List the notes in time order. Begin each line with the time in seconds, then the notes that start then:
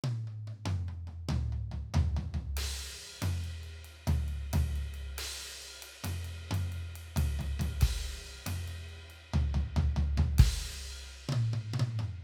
0.04 high tom
0.27 high tom
0.47 high tom
0.65 mid tom
0.88 mid tom
1.07 mid tom
1.29 floor tom, high tom
1.52 floor tom
1.71 floor tom
1.94 floor tom, mid tom
2.16 floor tom
2.34 floor tom
2.57 ride, crash
2.79 ride
3.22 mid tom, ride
3.44 ride
3.63 ride
3.85 ride
4.07 floor tom, ride
4.28 ride
4.53 floor tom, ride
4.76 ride
4.94 ride
5.18 ride, crash
5.43 ride
5.62 ride
5.82 ride
6.04 mid tom, ride
6.24 ride
6.51 mid tom, ride
6.72 ride
6.96 ride
7.16 floor tom, ride
7.39 floor tom, ride
7.59 floor tom, ride
7.80 kick, ride, crash
8.24 ride
8.46 mid tom, ride
8.68 ride
8.89 ride
9.10 ride
9.33 floor tom
9.54 floor tom
9.76 floor tom
9.96 floor tom
10.17 floor tom
10.38 kick, ride, crash
11.29 high tom
11.32 high tom
11.53 high tom
11.74 high tom
11.79 high tom
11.99 mid tom